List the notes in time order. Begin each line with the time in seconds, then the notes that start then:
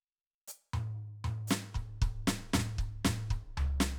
0.48 hi-hat pedal
0.73 mid tom
1.24 mid tom
1.47 snare, hi-hat pedal, crash
1.74 kick, mid tom
2.02 kick, mid tom
2.27 snare, mid tom
2.53 snare, mid tom, floor tom
2.59 snare
2.78 kick, mid tom
3.05 snare, mid tom
3.30 kick, mid tom
3.57 floor tom
3.80 snare